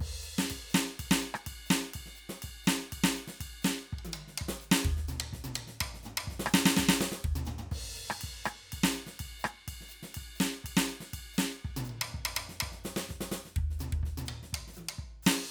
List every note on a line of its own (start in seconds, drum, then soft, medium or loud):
0.01 kick medium
0.01 crash loud
0.13 kick soft
0.23 hi-hat pedal medium
0.39 snare medium
0.50 kick soft
0.50 ride bell loud
0.57 kick soft
0.70 hi-hat pedal medium
0.75 snare loud
1.00 kick soft
1.00 ride bell loud
1.06 kick soft
1.11 snare loud
1.18 hi-hat pedal medium
1.22 ride medium
1.35 cross-stick medium
1.47 kick soft
1.47 ride bell loud
1.53 kick soft
1.66 hi-hat pedal medium
1.71 snare loud
1.94 kick soft
1.94 ride bell loud
2.06 snare soft
2.16 hi-hat pedal medium
2.16 ride soft
2.30 snare medium
2.43 kick soft
2.43 ride bell loud
2.50 kick soft
2.64 snare loud
2.64 hi-hat pedal medium
2.93 kick soft
2.93 ride bell loud
2.99 kick soft
3.04 snare loud
3.12 hi-hat pedal medium
3.16 ride medium
3.28 snare medium
3.41 kick soft
3.41 ride bell loud
3.47 kick soft
3.63 snare loud
3.63 hi-hat pedal medium
3.93 kick medium
3.99 kick soft
3.99 high tom medium
4.05 high tom loud
4.13 hi-hat pedal medium
4.13 high tom loud
4.28 snare soft
4.38 kick soft
4.38 high tom loud
4.48 kick soft
4.48 snare loud
4.60 hi-hat pedal medium
4.60 mid tom soft
4.72 snare loud
4.85 kick soft
4.85 mid tom loud
4.94 kick soft
4.94 snare soft
5.08 snare soft
5.08 hi-hat pedal medium
5.08 mid tom medium
5.20 mid tom loud
5.33 kick soft
5.33 snare medium
5.39 kick soft
5.44 mid tom medium
5.55 hi-hat pedal medium
5.55 mid tom loud
5.68 snare soft
5.81 kick soft
5.81 floor tom loud
5.89 kick soft
5.95 snare soft
6.03 snare soft
6.03 floor tom medium
6.03 hi-hat pedal medium
6.18 floor tom loud
6.28 kick soft
6.28 snare soft
6.34 kick soft
6.40 snare medium
6.46 cross-stick medium
6.51 snare loud
6.51 hi-hat pedal medium
6.66 snare loud
6.77 kick soft
6.77 snare loud
6.89 snare loud
6.99 snare loud
6.99 hi-hat pedal medium
7.12 snare medium
7.25 kick soft
7.25 mid tom loud
7.31 kick soft
7.36 kick soft
7.36 mid tom medium
7.46 floor tom loud
7.46 hi-hat pedal medium
7.59 floor tom medium
7.72 kick medium
7.72 crash loud
7.86 kick soft
7.96 hi-hat pedal medium
8.10 cross-stick medium
8.21 kick soft
8.21 ride bell loud
8.30 kick soft
8.44 cross-stick medium
8.44 hi-hat pedal medium
8.73 kick soft
8.73 ride bell loud
8.80 kick soft
8.84 snare loud
8.92 hi-hat pedal medium
8.92 ride soft
9.07 snare medium
9.20 kick soft
9.20 ride bell loud
9.27 kick soft
9.40 hi-hat pedal medium
9.45 cross-stick medium
9.68 kick soft
9.68 ride bell loud
9.74 kick soft
9.81 snare soft
9.89 hi-hat pedal medium
9.89 ride medium
10.03 snare medium
10.15 kick soft
10.15 ride bell loud
10.23 kick soft
10.36 hi-hat pedal medium
10.41 snare loud
10.65 kick soft
10.65 ride bell loud
10.77 snare loud
10.84 hi-hat pedal medium
10.89 ride medium
11.01 snare medium
11.14 kick soft
11.14 ride bell loud
11.20 kick soft
11.34 hi-hat pedal medium
11.39 snare loud
11.65 kick medium
11.71 kick soft
11.76 kick soft
11.76 mid tom loud
11.85 hi-hat pedal medium
11.90 high tom soft
12.02 floor tom loud
12.15 kick soft
12.22 kick soft
12.22 floor tom loud
12.35 hi-hat pedal medium
12.35 floor tom loud
12.50 snare medium
12.61 kick soft
12.61 floor tom loud
12.72 snare soft
12.84 snare medium
12.84 hi-hat pedal medium
12.97 snare loud
13.09 kick soft
13.09 snare soft
13.17 kick soft
13.21 snare medium
13.32 snare loud
13.32 hi-hat pedal medium
13.46 snare soft
13.56 kick soft
13.56 mid tom loud
13.65 kick soft
13.71 snare soft
13.77 snare soft
13.77 hi-hat pedal medium
13.81 snare soft
13.81 mid tom medium
13.93 mid tom loud
14.03 kick soft
14.03 snare soft
14.09 kick soft
14.18 mid tom medium
14.26 hi-hat pedal medium
14.26 mid tom loud
14.43 snare soft
14.53 kick soft
14.53 high tom loud
14.68 snare soft
14.74 hi-hat pedal medium
14.74 high tom medium
14.84 snare soft
14.89 high tom loud
14.99 kick soft
15.04 kick soft
15.23 hi-hat pedal medium
15.23 crash loud
15.27 snare loud